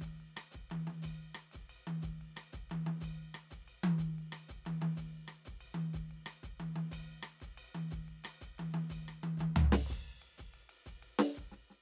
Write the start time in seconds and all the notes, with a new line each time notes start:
0.01 kick, hi-hat pedal, ride
0.20 ride
0.36 cross-stick, ride bell
0.51 kick, hi-hat pedal
0.70 high tom, ride
0.87 high tom, ride
1.02 kick, hi-hat pedal, ride bell
1.34 cross-stick, ride
1.51 kick, hi-hat pedal, ride
1.69 ride bell
1.87 high tom
2.02 kick, hi-hat pedal, ride
2.21 ride
2.36 cross-stick, ride bell
2.52 kick, hi-hat pedal
2.69 high tom, ride
2.86 high tom, ride
3.00 kick, hi-hat pedal, ride bell
3.34 cross-stick, ride
3.50 kick, hi-hat pedal, ride
3.68 ride bell
3.83 high tom
3.98 kick, hi-hat pedal, ride
4.18 ride
4.32 cross-stick, ride bell
4.48 kick, hi-hat pedal
4.65 high tom, ride
4.70 hi-hat pedal
4.81 high tom, ride
4.97 kick, hi-hat pedal, ride
5.28 cross-stick, ride
5.45 kick, hi-hat pedal, ride
5.60 ride bell
5.74 high tom
5.93 kick, hi-hat pedal, ride
6.11 ride
6.26 cross-stick, ride bell
6.43 kick, hi-hat pedal
6.60 high tom, ride
6.76 high tom, ride
6.91 kick, hi-hat pedal, ride bell
7.23 cross-stick, ride
7.40 kick, hi-hat pedal, ride
7.57 ride bell
7.63 hi-hat pedal
7.74 high tom
7.91 kick, hi-hat pedal, ride
8.08 ride
8.24 cross-stick, ride bell
8.41 kick, hi-hat pedal
8.58 high tom, ride
8.74 high tom, ride
8.89 kick, hi-hat pedal, ride bell
9.08 cross-stick
9.23 high tom
9.37 kick, hi-hat pedal, high tom
9.56 floor tom
9.72 snare
9.85 crash
9.90 kick, hi-hat pedal
10.22 ride
10.37 kick, hi-hat pedal
10.53 ride
10.60 hi-hat pedal
10.69 ride
10.86 kick, hi-hat pedal
11.02 ride
11.19 snare
11.34 kick, hi-hat pedal
11.38 ride
11.51 snare
11.68 snare, ride